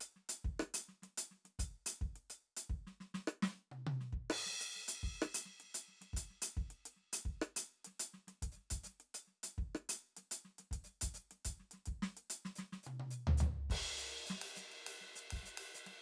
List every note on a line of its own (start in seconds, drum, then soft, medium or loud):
0.01 closed hi-hat medium
0.16 snare soft
0.29 closed hi-hat loud
0.45 kick soft
0.60 cross-stick medium
0.62 cross-stick medium
0.74 closed hi-hat loud
0.89 snare soft
1.03 snare soft
1.03 closed hi-hat soft
1.18 closed hi-hat loud
1.31 snare soft
1.45 snare soft
1.45 closed hi-hat soft
1.59 closed hi-hat medium
1.59 kick soft
1.86 closed hi-hat loud
2.01 kick soft
2.16 closed hi-hat soft
2.30 closed hi-hat medium
2.57 closed hi-hat loud
2.70 kick soft
2.87 snare soft
3.01 snare soft
3.15 snare medium
3.28 cross-stick medium
3.43 snare medium
3.56 snare soft
3.72 closed hi-hat soft
3.72 high tom medium
3.87 high tom medium
4.01 snare soft
4.13 kick soft
4.30 cross-stick medium
4.30 crash loud
4.46 snare soft
4.49 snare soft
4.61 closed hi-hat medium
4.76 snare soft
4.88 closed hi-hat loud
5.03 kick soft
5.22 cross-stick medium
5.25 cross-stick soft
5.35 closed hi-hat loud
5.46 snare soft
5.60 snare soft
5.60 closed hi-hat soft
5.75 closed hi-hat loud
5.88 snare soft
6.01 snare soft
6.01 closed hi-hat soft
6.14 closed hi-hat medium
6.14 kick soft
6.31 snare soft
6.42 closed hi-hat loud
6.57 kick soft
6.71 closed hi-hat soft
6.86 closed hi-hat medium
6.97 snare soft
7.13 closed hi-hat loud
7.25 kick soft
7.42 cross-stick medium
7.57 closed hi-hat loud
7.85 snare soft
7.85 closed hi-hat medium
8.00 closed hi-hat loud
8.14 snare soft
8.28 snare soft
8.28 closed hi-hat soft
8.42 kick soft
8.42 open hi-hat medium
8.52 hi-hat pedal soft
8.57 snare soft
8.71 open hi-hat medium
8.71 kick soft
8.84 snare soft
8.84 hi-hat pedal medium
9.00 closed hi-hat soft
9.15 closed hi-hat medium
9.28 snare soft
9.44 closed hi-hat medium
9.44 snare soft
9.58 kick soft
9.75 cross-stick medium
9.89 closed hi-hat loud
10.17 snare soft
10.17 closed hi-hat medium
10.32 closed hi-hat loud
10.45 snare soft
10.59 snare soft
10.59 closed hi-hat medium
10.71 kick soft
10.71 open hi-hat medium
10.84 snare soft
10.84 hi-hat pedal soft
11.02 open hi-hat loud
11.02 kick soft
11.14 snare soft
11.14 hi-hat pedal medium
11.31 snare soft
11.31 closed hi-hat soft
11.45 closed hi-hat medium
11.45 kick soft
11.60 snare soft
11.71 snare soft
11.71 closed hi-hat medium
11.86 kick soft
11.86 closed hi-hat medium
12.03 snare medium
12.17 closed hi-hat medium
12.30 closed hi-hat loud
12.45 snare soft
12.56 snare soft
12.56 hi-hat pedal medium
12.73 snare soft
12.83 hi-hat pedal soft
12.83 high tom medium
13.00 high tom medium
13.11 hi-hat pedal medium
13.27 floor tom loud
13.38 floor tom loud
13.38 hi-hat pedal medium
13.70 kick medium
13.70 crash medium
13.70 ride loud
13.98 hi-hat pedal medium
14.26 snare medium
14.26 hi-hat pedal medium
14.42 ride loud
14.56 snare soft
14.56 hi-hat pedal medium
14.70 snare soft
14.70 ride medium
14.87 hi-hat pedal medium
14.87 ride loud
15.01 snare soft
15.16 hi-hat pedal medium
15.16 ride soft
15.31 kick soft
15.31 ride loud
15.43 snare soft
15.43 hi-hat pedal medium
15.58 ride loud
15.75 hi-hat pedal medium
15.87 snare soft
15.87 ride medium